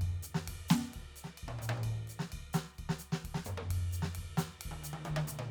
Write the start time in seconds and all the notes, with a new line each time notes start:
0.01 kick, ride bell
0.07 kick
0.09 kick
0.22 hi-hat pedal, ride
0.34 snare
0.47 kick, ride
0.68 snare, hi-hat pedal
0.93 kick, ride
1.16 hi-hat pedal, ride
1.24 snare
1.37 ride bell
1.43 kick
1.48 mid tom
1.59 hi-hat pedal, mid tom
1.69 mid tom
1.77 mid tom
1.83 kick, ride bell
2.07 hi-hat pedal, ride
2.19 snare
2.32 kick, ride bell
2.53 snare, hi-hat pedal
2.73 hi-hat pedal
2.78 kick, ride bell
2.89 snare
2.99 hi-hat pedal, ride
3.12 snare
3.24 kick, ride
3.34 snare
3.44 floor tom, hi-hat pedal
3.57 floor tom
3.70 kick, ride
3.76 kick
3.91 hi-hat pedal, ride
4.02 snare
4.12 hi-hat pedal, ride
4.17 kick
4.37 snare, hi-hat pedal
4.59 hi-hat pedal, ride
4.65 kick
4.71 kick, high tom
4.73 kick
4.82 hi-hat pedal, high tom
4.93 high tom
5.04 hi-hat pedal, high tom
5.10 kick
5.16 high tom
5.27 hi-hat pedal, mid tom
5.39 mid tom
5.47 mid tom